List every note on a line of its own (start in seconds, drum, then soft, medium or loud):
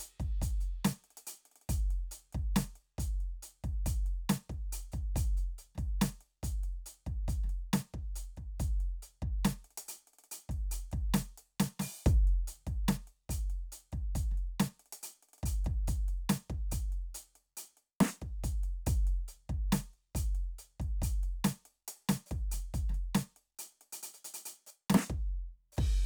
0.01 closed hi-hat loud
0.21 kick medium
0.21 closed hi-hat soft
0.42 closed hi-hat loud
0.42 kick medium
0.61 closed hi-hat soft
0.85 closed hi-hat loud
0.85 snare loud
1.05 closed hi-hat soft
1.11 closed hi-hat soft
1.18 closed hi-hat medium
1.28 closed hi-hat loud
1.46 closed hi-hat soft
1.52 closed hi-hat soft
1.57 closed hi-hat soft
1.62 closed hi-hat soft
1.70 closed hi-hat loud
1.70 kick medium
1.91 closed hi-hat soft
2.12 closed hi-hat loud
2.33 kick medium
2.33 closed hi-hat soft
2.57 closed hi-hat loud
2.57 snare loud
2.76 closed hi-hat soft
2.99 closed hi-hat loud
2.99 kick medium
3.21 closed hi-hat soft
3.43 closed hi-hat medium
3.65 kick soft
3.65 closed hi-hat soft
3.87 closed hi-hat loud
3.87 kick medium
4.07 closed hi-hat soft
4.30 closed hi-hat loud
4.30 snare loud
4.50 kick medium
4.50 closed hi-hat soft
4.73 closed hi-hat loud
4.93 closed hi-hat soft
4.93 kick medium
5.17 closed hi-hat loud
5.17 kick medium
5.38 closed hi-hat soft
5.59 closed hi-hat medium
5.76 kick medium
5.76 snare soft
5.76 closed hi-hat soft
6.02 closed hi-hat loud
6.02 snare loud
6.22 closed hi-hat soft
6.44 closed hi-hat loud
6.44 kick medium
6.64 closed hi-hat soft
6.87 closed hi-hat loud
7.07 kick soft
7.07 closed hi-hat soft
7.29 closed hi-hat medium
7.29 kick medium
7.44 snare soft
7.50 closed hi-hat soft
7.74 closed hi-hat loud
7.74 snare loud
7.94 kick medium
7.94 closed hi-hat soft
8.16 closed hi-hat loud
8.38 kick soft
8.38 closed hi-hat soft
8.60 closed hi-hat medium
8.60 kick medium
8.81 closed hi-hat soft
9.03 closed hi-hat medium
9.23 kick medium
9.23 closed hi-hat soft
9.46 closed hi-hat loud
9.46 snare loud
9.65 closed hi-hat soft
9.72 closed hi-hat soft
9.78 closed hi-hat loud
9.89 closed hi-hat loud
10.08 closed hi-hat soft
10.14 closed hi-hat soft
10.19 closed hi-hat soft
10.25 closed hi-hat soft
10.32 closed hi-hat loud
10.50 kick soft
10.50 closed hi-hat soft
10.72 closed hi-hat loud
10.92 kick medium
10.92 closed hi-hat soft
11.15 closed hi-hat loud
11.15 snare loud
11.38 closed hi-hat medium
11.61 closed hi-hat loud
11.61 snare loud
11.80 open hi-hat loud
11.80 snare medium
12.07 kick loud
12.07 closed hi-hat soft
12.07 hi-hat pedal medium
12.28 closed hi-hat soft
12.48 closed hi-hat loud
12.68 kick medium
12.68 closed hi-hat soft
12.89 closed hi-hat medium
12.89 snare loud
13.08 closed hi-hat soft
13.30 closed hi-hat loud
13.30 kick medium
13.51 closed hi-hat soft
13.73 closed hi-hat loud
13.93 kick soft
13.93 closed hi-hat soft
14.16 closed hi-hat loud
14.16 kick medium
14.32 snare soft
14.38 closed hi-hat soft
14.61 closed hi-hat loud
14.61 snare loud
14.80 closed hi-hat soft
14.87 closed hi-hat soft
14.93 closed hi-hat loud
15.04 closed hi-hat loud
15.17 closed hi-hat soft
15.23 closed hi-hat soft
15.30 closed hi-hat soft
15.34 closed hi-hat soft
15.39 closed hi-hat soft
15.44 closed hi-hat loud
15.44 kick medium
15.65 kick medium
15.65 closed hi-hat soft
15.88 closed hi-hat loud
15.88 kick medium
16.09 closed hi-hat soft
16.30 closed hi-hat loud
16.30 snare loud
16.51 kick medium
16.51 closed hi-hat soft
16.72 closed hi-hat loud
16.72 kick medium
16.93 closed hi-hat soft
17.15 closed hi-hat loud
17.36 closed hi-hat soft
17.58 closed hi-hat loud
17.78 closed hi-hat soft
18.01 closed hi-hat loud
18.01 snare loud
18.22 kick soft
18.22 closed hi-hat soft
18.45 closed hi-hat loud
18.45 kick medium
18.64 closed hi-hat soft
18.87 closed hi-hat loud
18.87 kick medium
19.08 closed hi-hat soft
19.29 closed hi-hat medium
19.50 kick medium
19.50 closed hi-hat soft
19.73 closed hi-hat loud
19.73 snare loud
19.94 closed hi-hat soft
20.16 closed hi-hat loud
20.16 kick medium
20.36 closed hi-hat soft
20.59 closed hi-hat medium
20.81 kick medium
20.81 closed hi-hat soft
21.03 closed hi-hat loud
21.03 kick medium
21.24 closed hi-hat soft
21.45 closed hi-hat loud
21.45 snare loud
21.66 closed hi-hat soft
21.89 closed hi-hat loud
22.10 open hi-hat loud
22.10 snare loud
22.27 hi-hat pedal medium
22.32 kick medium
22.32 closed hi-hat soft
22.52 closed hi-hat loud
22.52 snare soft
22.75 closed hi-hat medium
22.75 kick medium
22.90 snare soft
22.95 closed hi-hat soft
23.16 closed hi-hat loud
23.16 snare loud
23.37 closed hi-hat soft
23.60 closed hi-hat loud
23.73 closed hi-hat soft
23.82 closed hi-hat soft
23.93 closed hi-hat loud
24.04 closed hi-hat loud
24.15 closed hi-hat medium
24.25 closed hi-hat loud
24.35 closed hi-hat loud
24.46 closed hi-hat loud
24.67 hi-hat pedal medium
24.91 snare loud
24.95 snare loud
25.11 kick medium
25.73 hi-hat pedal soft
25.78 kick medium
25.78 crash medium
25.93 closed hi-hat soft